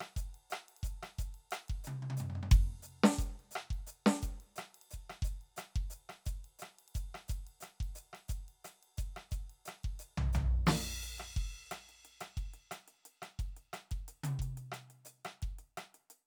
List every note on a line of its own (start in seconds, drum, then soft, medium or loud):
0.01 cross-stick medium
0.01 ride soft
0.17 kick medium
0.17 hi-hat pedal medium
0.17 ride soft
0.35 ride soft
0.50 cross-stick medium
0.50 hi-hat pedal medium
0.50 ride soft
0.69 ride soft
0.77 ride soft
0.83 kick medium
0.83 hi-hat pedal medium
0.83 ride soft
1.03 cross-stick medium
1.03 ride soft
1.19 kick medium
1.19 hi-hat pedal medium
1.19 ride soft
1.35 ride soft
1.51 cross-stick medium
1.51 hi-hat pedal medium
1.51 ride medium
1.69 kick medium
1.69 ride soft
1.84 hi-hat pedal medium
1.84 high tom medium
2.03 high tom medium
2.10 high tom medium
2.17 hi-hat pedal medium
2.17 mid tom medium
2.30 mid tom medium
2.35 mid tom medium
2.43 mid tom medium
2.51 kick loud
2.51 hi-hat pedal medium
2.51 ride medium
2.83 hi-hat pedal medium
2.87 ride soft
3.04 snare loud
3.19 kick medium
3.19 hi-hat pedal medium
3.19 ride soft
3.40 ride soft
3.51 hi-hat pedal medium
3.56 cross-stick medium
3.56 ride soft
3.71 kick medium
3.71 ride soft
3.87 hi-hat pedal medium
3.87 ride soft
4.07 snare medium
4.07 ride soft
4.22 kick medium
4.22 hi-hat pedal medium
4.22 ride soft
4.41 ride soft
4.56 cross-stick medium
4.56 hi-hat pedal medium
4.56 ride soft
4.75 ride soft
4.82 ride soft
4.90 kick soft
4.90 hi-hat pedal medium
4.90 ride soft
5.10 cross-stick medium
5.10 ride soft
5.23 kick medium
5.23 hi-hat pedal medium
5.23 ride soft
5.42 ride soft
5.57 cross-stick medium
5.57 hi-hat pedal medium
5.57 ride soft
5.76 kick medium
5.76 ride soft
5.90 hi-hat pedal medium
5.90 ride soft
6.10 cross-stick medium
6.10 ride soft
6.26 kick medium
6.26 hi-hat pedal medium
6.26 ride soft
6.45 ride soft
6.59 cross-stick medium
6.59 hi-hat pedal medium
6.59 ride soft
6.79 ride soft
6.88 ride soft
6.95 kick medium
6.95 hi-hat pedal medium
6.95 ride soft
7.15 cross-stick medium
7.15 ride soft
7.29 kick medium
7.29 hi-hat pedal medium
7.33 ride soft
7.47 ride soft
7.61 cross-stick soft
7.61 hi-hat pedal medium
7.66 ride soft
7.81 kick medium
7.81 ride soft
7.96 hi-hat pedal medium
7.96 ride soft
8.13 cross-stick soft
8.13 ride soft
8.29 kick medium
8.29 hi-hat pedal medium
8.29 ride soft
8.49 ride soft
8.65 cross-stick soft
8.65 hi-hat pedal medium
8.65 ride soft
8.83 ride soft
8.98 kick medium
8.98 hi-hat pedal medium
8.98 ride soft
9.17 cross-stick medium
9.17 ride soft
9.31 kick medium
9.31 hi-hat pedal medium
9.31 ride soft
9.50 ride soft
9.66 cross-stick medium
9.66 hi-hat pedal medium
9.66 ride soft
9.84 kick medium
9.84 ride soft
10.00 hi-hat pedal medium
10.00 ride soft
10.18 floor tom loud
10.33 floor tom loud
10.33 hi-hat pedal medium
10.67 snare loud
10.67 hi-hat pedal medium
10.67 crash loud
11.03 closed hi-hat medium
11.19 cross-stick medium
11.19 closed hi-hat soft
11.37 kick medium
11.37 closed hi-hat soft
11.55 closed hi-hat soft
11.72 cross-stick medium
11.72 closed hi-hat medium
11.89 closed hi-hat soft
12.05 closed hi-hat soft
12.21 cross-stick medium
12.21 closed hi-hat medium
12.37 kick medium
12.37 closed hi-hat soft
12.54 closed hi-hat soft
12.72 cross-stick medium
12.72 closed hi-hat medium
12.88 closed hi-hat soft
13.06 closed hi-hat medium
13.22 cross-stick medium
13.22 closed hi-hat soft
13.39 kick medium
13.39 closed hi-hat soft
13.57 closed hi-hat soft
13.74 cross-stick medium
13.74 closed hi-hat medium
13.91 kick medium
13.91 closed hi-hat soft
14.08 closed hi-hat medium
14.24 closed hi-hat medium
14.24 high tom loud
14.40 kick medium
14.40 closed hi-hat medium
14.58 closed hi-hat soft
14.72 cross-stick medium
14.72 closed hi-hat medium
14.90 closed hi-hat soft
15.05 closed hi-hat soft
15.05 hi-hat pedal medium
15.25 cross-stick medium
15.25 closed hi-hat soft
15.42 kick medium
15.42 closed hi-hat soft
15.59 closed hi-hat soft
15.78 cross-stick medium
15.78 closed hi-hat medium
15.95 closed hi-hat soft
16.10 closed hi-hat medium